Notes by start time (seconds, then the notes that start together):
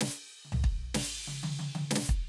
0.01 snare, crash
0.45 high tom
0.52 floor tom
0.64 kick
0.94 snare, crash
1.27 high tom
1.43 high tom
1.59 high tom
1.75 high tom
1.91 snare
1.96 snare
2.09 kick